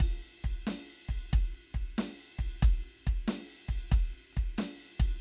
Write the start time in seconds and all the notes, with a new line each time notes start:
0.00 kick, ride
0.24 ride
0.44 kick, ride
0.67 snare, ride
0.90 ride
1.09 kick, ride
1.33 kick, ride
1.55 ride
1.74 kick, ride
1.98 snare, ride
2.39 kick, ride
2.63 kick, ride
2.84 ride
3.05 kick, ride
3.28 snare, ride
3.49 ride
3.69 kick, ride
3.92 kick, ride
4.13 ride
4.33 kick, ride
4.58 snare, ride
4.78 ride
5.00 kick, ride